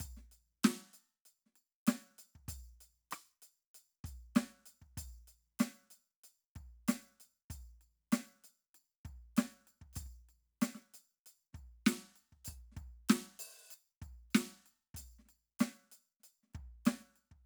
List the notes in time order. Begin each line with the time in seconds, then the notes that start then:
0.00 kick, percussion
0.05 kick
0.17 snare
0.32 percussion
0.64 snare, percussion
0.94 percussion
1.26 percussion
1.46 snare
1.50 snare
1.56 percussion
1.87 snare, percussion
2.19 percussion
2.35 kick
2.48 kick, percussion
2.81 percussion
3.11 cross-stick, percussion
3.42 percussion
3.75 percussion
4.04 kick, percussion
4.36 snare, percussion
4.66 percussion
4.82 kick
4.98 kick, percussion
5.28 percussion
5.60 snare, percussion
5.91 percussion
6.24 percussion
6.56 kick, percussion
6.88 snare, percussion
7.20 percussion
7.50 kick, percussion
7.81 percussion
8.12 snare, percussion
8.44 percussion
8.75 percussion
9.05 kick, percussion
9.37 snare, percussion
9.67 percussion
9.82 kick
9.93 percussion
9.96 kick, percussion
10.02 kick
10.06 kick
10.29 percussion
10.62 snare, percussion
10.75 snare
10.94 percussion
11.26 percussion
11.53 kick, snare, percussion
11.86 snare, percussion
12.16 percussion
12.33 kick
12.45 kick, percussion
12.72 snare
12.77 kick, percussion
13.09 snare, percussion
13.40 percussion
13.71 percussion
14.02 kick, percussion
14.31 percussion
14.35 snare, percussion
14.66 percussion
14.95 kick, percussion
15.00 snare
15.19 snare
15.26 snare, percussion
15.60 snare, percussion
15.92 percussion
16.20 snare, percussion
16.43 snare
16.47 snare
16.50 snare, percussion
16.55 kick
16.86 snare, percussion
17.00 snare
17.16 percussion
17.32 kick